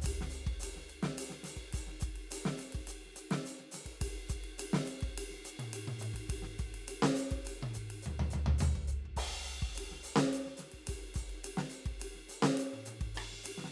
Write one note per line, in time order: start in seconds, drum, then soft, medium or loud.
0.01 kick medium
0.01 snare soft
0.01 hi-hat pedal medium
0.06 ride loud
0.21 snare soft
0.30 hi-hat pedal medium
0.37 ride soft
0.47 kick medium
0.47 ride soft
0.60 hi-hat pedal medium
0.60 ride loud
0.76 snare soft
0.89 hi-hat pedal soft
0.89 ride medium
1.03 snare medium
1.03 ride medium
1.18 hi-hat pedal medium
1.18 ride loud
1.30 snare soft
1.44 snare soft
1.44 hi-hat pedal medium
1.44 ride medium
1.57 kick soft
1.57 ride medium
1.73 kick medium
1.73 hi-hat pedal medium
1.73 ride medium
1.87 snare soft
2.00 kick medium
2.00 hi-hat pedal medium
2.00 ride medium
2.16 ride medium
2.31 hi-hat pedal loud
2.31 ride loud
2.46 snare medium
2.58 hi-hat pedal medium
2.58 ride medium
2.73 kick soft
2.73 ride medium
2.88 hi-hat pedal medium
2.88 ride medium
3.06 snare soft
3.16 hi-hat pedal medium
3.16 ride medium
3.31 snare medium
3.31 ride medium
3.46 hi-hat pedal medium
3.46 ride bell medium
3.60 snare soft
3.72 snare soft
3.72 hi-hat pedal medium
3.72 ride medium
3.86 kick soft
3.86 ride medium
4.01 kick medium
4.01 hi-hat pedal medium
4.01 ride loud
4.29 kick medium
4.29 hi-hat pedal medium
4.29 ride medium
4.44 ride medium
4.59 hi-hat pedal medium
4.59 ride loud
4.74 snare loud
4.85 hi-hat pedal medium
4.85 ride medium
5.01 kick medium
5.01 ride medium
5.18 hi-hat pedal medium
5.18 ride loud
5.31 snare soft
5.45 hi-hat pedal medium
5.45 ride medium
5.60 high tom medium
5.60 ride medium
5.74 hi-hat pedal medium
5.74 ride loud
5.88 high tom medium
5.99 hi-hat pedal medium
5.99 high tom medium
5.99 ride medium
6.14 kick soft
6.14 ride medium
6.29 kick medium
6.29 hi-hat pedal soft
6.29 ride loud
6.43 snare soft
6.59 kick medium
6.59 hi-hat pedal soft
6.59 ride medium
6.75 ride medium
6.88 hi-hat pedal medium
6.88 ride loud
7.03 snare loud
7.15 hi-hat pedal medium
7.15 ride medium
7.31 kick medium
7.31 ride medium
7.45 hi-hat pedal medium
7.45 ride medium
7.63 high tom medium
7.74 kick soft
7.74 hi-hat pedal medium
7.74 ride medium
7.91 ride medium
8.03 floor tom medium
8.03 hi-hat pedal medium
8.20 floor tom loud
8.31 floor tom medium
8.31 hi-hat pedal medium
8.47 floor tom loud
8.59 floor tom loud
8.59 hi-hat pedal medium
8.76 kick soft
8.88 hi-hat pedal medium
9.06 kick soft
9.17 kick soft
9.17 hi-hat pedal medium
9.17 crash loud
9.17 ride medium
9.44 hi-hat pedal medium
9.49 ride soft
9.62 kick medium
9.75 hi-hat pedal medium
9.75 ride loud
9.92 snare soft
10.04 hi-hat pedal medium
10.04 ride soft
10.16 snare loud
10.16 ride soft
10.33 hi-hat pedal medium
10.33 ride medium
10.46 snare soft
10.57 snare soft
10.57 hi-hat pedal medium
10.57 ride medium
10.72 kick soft
10.72 ride medium
10.87 kick soft
10.87 hi-hat pedal medium
10.87 ride loud
11.15 kick medium
11.15 hi-hat pedal medium
11.15 ride medium
11.30 ride medium
11.44 hi-hat pedal medium
11.44 ride loud
11.58 snare medium
11.70 hi-hat pedal medium
11.70 ride soft
11.86 kick medium
11.86 ride medium
12.00 hi-hat pedal medium
12.00 ride loud
12.15 snare soft
12.29 hi-hat pedal medium
12.29 ride medium
12.43 snare loud
12.43 ride medium
12.58 hi-hat pedal medium
12.58 ride medium
12.74 high tom soft
12.86 hi-hat pedal medium
12.86 high tom medium
12.86 ride medium
13.01 kick medium
13.01 ride medium
13.15 cross-stick medium
13.15 hi-hat pedal medium
13.15 ride medium
13.32 snare soft
13.44 hi-hat pedal medium
13.44 ride loud
13.58 snare soft
13.65 snare soft